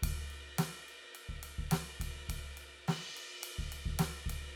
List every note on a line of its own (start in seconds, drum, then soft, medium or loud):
0.03 kick medium
0.03 ride loud
0.30 ride soft
0.58 snare medium
0.58 ride loud
0.88 ride soft
1.15 ride medium
1.29 kick soft
1.43 ride medium
1.58 kick medium
1.71 snare medium
1.71 ride loud
2.00 kick medium
2.00 ride medium
2.29 kick medium
2.29 ride loud
2.57 ride medium
2.88 snare medium
2.88 ride medium
3.17 ride medium
3.43 ride loud
3.58 kick medium
3.72 ride medium
3.86 kick medium
3.99 snare medium
3.99 ride loud
4.26 kick medium
4.26 ride medium